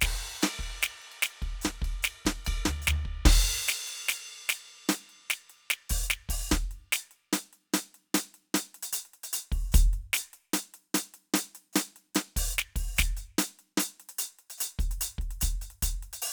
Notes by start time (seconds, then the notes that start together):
0.01 kick, snare, hi-hat pedal, crash
0.42 snare, hi-hat pedal, ride bell
0.59 kick, ride bell
0.82 snare, hi-hat pedal, ride bell
1.02 ride bell
1.12 ride bell
1.23 snare, hi-hat pedal, ride bell
1.42 kick, ride bell
1.62 kick, snare, hi-hat pedal, ride bell
1.82 kick, ride bell
2.03 snare, hi-hat pedal, ride bell
2.25 kick, snare, ride bell
2.45 kick, hi-hat pedal, ride bell
2.66 snare, floor tom
2.82 hi-hat pedal
2.87 snare, floor tom
3.05 kick
3.26 kick, snare, crash
3.31 hi-hat pedal
3.68 closed hi-hat, snare
3.87 closed hi-hat
4.09 closed hi-hat, snare
4.28 closed hi-hat
4.49 closed hi-hat, snare
4.68 closed hi-hat
4.89 closed hi-hat, snare
5.09 closed hi-hat
5.30 closed hi-hat, snare
5.50 closed hi-hat
5.70 snare
5.90 open hi-hat, kick
6.05 hi-hat pedal
6.10 snare
6.29 open hi-hat, kick
6.49 closed hi-hat, kick, snare, hi-hat pedal
6.71 closed hi-hat
6.93 closed hi-hat, snare
7.11 closed hi-hat
7.33 closed hi-hat, snare
7.53 closed hi-hat
7.73 closed hi-hat, snare, hi-hat pedal
7.94 closed hi-hat
8.14 closed hi-hat, snare
8.34 closed hi-hat
8.54 closed hi-hat, snare
8.75 closed hi-hat
8.83 closed hi-hat
8.93 closed hi-hat
9.05 closed hi-hat
9.14 closed hi-hat
9.24 closed hi-hat
9.31 closed hi-hat, hi-hat pedal
9.52 kick, open hi-hat
9.72 closed hi-hat, kick, hi-hat pedal
9.93 closed hi-hat
10.13 closed hi-hat, snare
10.33 closed hi-hat
10.54 closed hi-hat, snare
10.74 closed hi-hat
10.95 closed hi-hat, snare
11.14 closed hi-hat
11.34 closed hi-hat, snare
11.55 closed hi-hat
11.73 closed hi-hat, snare, hi-hat pedal
11.96 closed hi-hat
12.15 closed hi-hat, snare
12.37 open hi-hat, kick
12.53 hi-hat pedal
12.59 snare
12.76 kick, open hi-hat
12.97 closed hi-hat, kick, snare, hi-hat pedal
13.17 closed hi-hat
13.39 closed hi-hat, snare
13.59 closed hi-hat
13.78 closed hi-hat, snare
14.00 closed hi-hat
14.09 closed hi-hat
14.19 closed hi-hat
14.39 closed hi-hat
14.50 closed hi-hat
14.58 closed hi-hat, hi-hat pedal
14.79 closed hi-hat, kick
14.91 closed hi-hat
15.01 closed hi-hat
15.18 kick, closed hi-hat
15.31 closed hi-hat
15.41 closed hi-hat, kick, hi-hat pedal
15.62 closed hi-hat
15.70 closed hi-hat
15.83 open hi-hat, kick
16.03 closed hi-hat
16.13 closed hi-hat
16.22 open hi-hat